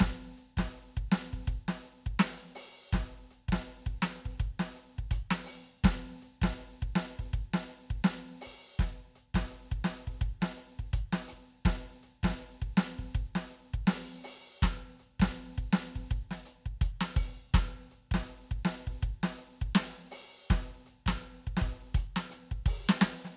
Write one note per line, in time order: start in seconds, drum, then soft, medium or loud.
0.00 closed hi-hat medium
0.00 kick medium
0.00 snare loud
0.21 closed hi-hat soft
0.38 closed hi-hat medium
0.57 kick medium
0.57 snare medium
0.57 closed hi-hat medium
0.76 closed hi-hat medium
0.97 kick medium
0.97 closed hi-hat soft
1.12 closed hi-hat loud
1.12 snare loud
1.33 kick soft
1.33 closed hi-hat soft
1.47 closed hi-hat medium
1.47 kick medium
1.68 snare medium
1.68 closed hi-hat soft
1.84 closed hi-hat medium
2.06 kick soft
2.19 open hi-hat loud
2.19 snare loud
2.55 open hi-hat loud
2.93 open hi-hat loud
2.93 kick medium
2.93 snare medium
2.93 hi-hat pedal soft
3.15 closed hi-hat soft
3.31 closed hi-hat medium
3.48 kick medium
3.48 snare loud
3.48 closed hi-hat medium
3.68 closed hi-hat medium
3.86 kick medium
3.86 closed hi-hat soft
4.02 closed hi-hat loud
4.02 snare loud
4.25 kick soft
4.40 closed hi-hat medium
4.40 kick medium
4.59 snare medium
4.59 closed hi-hat soft
4.76 closed hi-hat medium
4.96 kick soft
4.96 closed hi-hat soft
5.11 closed hi-hat loud
5.11 kick medium
5.31 snare loud
5.46 open hi-hat loud
5.84 closed hi-hat medium
5.84 kick medium
5.84 snare loud
5.84 hi-hat pedal soft
6.06 closed hi-hat soft
6.22 closed hi-hat medium
6.42 kick medium
6.42 snare loud
6.42 closed hi-hat medium
6.60 closed hi-hat medium
6.82 kick medium
6.82 closed hi-hat soft
6.96 closed hi-hat loud
6.96 snare loud
7.19 kick soft
7.19 closed hi-hat soft
7.33 closed hi-hat medium
7.33 kick medium
7.54 snare loud
7.54 closed hi-hat soft
7.69 closed hi-hat medium
7.89 kick medium
7.89 closed hi-hat soft
8.04 open hi-hat loud
8.04 snare loud
8.41 open hi-hat loud
8.46 kick soft
8.62 open hi-hat soft
8.79 closed hi-hat loud
8.79 kick medium
8.79 snare medium
8.79 hi-hat pedal soft
9.00 closed hi-hat soft
9.15 closed hi-hat medium
9.34 kick medium
9.34 snare loud
9.34 closed hi-hat soft
9.51 closed hi-hat medium
9.71 kick medium
9.71 closed hi-hat soft
9.84 closed hi-hat loud
9.84 snare loud
10.06 kick soft
10.06 closed hi-hat soft
10.21 closed hi-hat medium
10.21 kick medium
10.41 snare loud
10.41 closed hi-hat soft
10.57 closed hi-hat medium
10.77 kick soft
10.77 closed hi-hat soft
10.93 closed hi-hat loud
10.93 kick medium
11.13 snare loud
11.28 open hi-hat loud
11.32 kick soft
11.65 open hi-hat loud
11.65 kick medium
11.65 snare loud
11.65 hi-hat pedal soft
11.86 closed hi-hat soft
12.03 closed hi-hat medium
12.23 kick medium
12.23 snare loud
12.23 closed hi-hat soft
12.29 snare medium
12.41 closed hi-hat medium
12.62 kick soft
12.62 closed hi-hat soft
12.77 closed hi-hat loud
12.77 snare loud
12.99 kick soft
12.99 closed hi-hat soft
13.15 closed hi-hat medium
13.15 kick medium
13.35 snare medium
13.35 closed hi-hat soft
13.51 closed hi-hat medium
13.72 kick medium
13.72 closed hi-hat soft
13.85 open hi-hat loud
13.85 snare loud
13.85 hi-hat pedal soft
14.24 open hi-hat loud
14.62 open hi-hat loud
14.62 kick medium
14.62 snare loud
14.62 hi-hat pedal soft
14.84 closed hi-hat soft
14.99 closed hi-hat medium
15.20 kick medium
15.20 snare loud
15.20 closed hi-hat soft
15.38 closed hi-hat medium
15.58 kick medium
15.58 closed hi-hat soft
15.73 closed hi-hat loud
15.73 snare loud
15.96 kick soft
15.96 closed hi-hat soft
16.10 closed hi-hat medium
16.10 kick medium
16.30 snare medium
16.30 closed hi-hat soft
16.46 closed hi-hat loud
16.66 kick soft
16.66 closed hi-hat soft
16.81 closed hi-hat loud
16.81 kick medium
17.01 snare loud
17.16 open hi-hat loud
17.16 kick medium
17.54 open hi-hat medium
17.54 kick loud
17.54 snare loud
17.54 hi-hat pedal soft
17.76 closed hi-hat soft
17.91 closed hi-hat medium
18.11 kick medium
18.11 snare loud
18.11 closed hi-hat soft
18.29 closed hi-hat medium
18.50 kick medium
18.50 closed hi-hat soft
18.65 closed hi-hat medium
18.65 snare loud
18.87 kick soft
18.87 closed hi-hat soft
19.02 closed hi-hat medium
19.02 kick medium
19.23 snare loud
19.23 closed hi-hat soft
19.38 closed hi-hat medium
19.60 kick medium
19.60 closed hi-hat soft
19.75 open hi-hat loud
19.75 snare loud
20.11 open hi-hat loud
20.48 closed hi-hat loud
20.48 kick medium
20.48 snare medium
20.48 hi-hat pedal soft
20.71 closed hi-hat soft
20.86 closed hi-hat medium
21.06 kick medium
21.06 snare loud
21.06 closed hi-hat soft
21.23 closed hi-hat medium
21.44 kick soft
21.44 closed hi-hat soft
21.57 closed hi-hat medium
21.57 snare medium
21.61 kick medium
21.79 closed hi-hat soft
21.95 closed hi-hat loud
21.95 kick medium
22.16 snare medium
22.31 closed hi-hat loud
22.51 kick soft
22.51 closed hi-hat soft
22.66 open hi-hat loud
22.66 kick medium
22.89 snare loud
23.01 kick soft
23.01 snare loud
23.25 snare soft